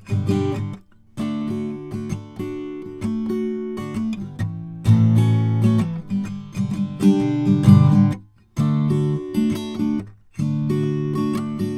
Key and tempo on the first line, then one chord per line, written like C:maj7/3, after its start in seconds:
D major, 130 BPM
0.00 G:maj
0.71 D:maj
4.41 A:aug(13)
6.25 G:maj
8.10 D:maj